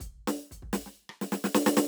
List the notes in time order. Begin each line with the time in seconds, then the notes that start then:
0.05 closed hi-hat, kick
0.27 closed hi-hat, snare
0.51 closed hi-hat, kick
0.62 kick
0.73 open hi-hat, snare
0.86 snare
0.94 hi-hat pedal
1.09 cross-stick
1.21 snare
1.32 snare
1.44 snare
1.55 snare
1.66 snare
1.77 snare